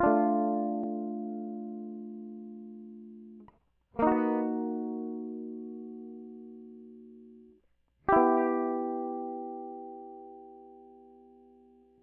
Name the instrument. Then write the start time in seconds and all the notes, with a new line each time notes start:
electric guitar
0.00 D4 F4
0.06 A3
3.99 A#3 D#4
4.07 F#4
8.09 E4 G4
8.16 B3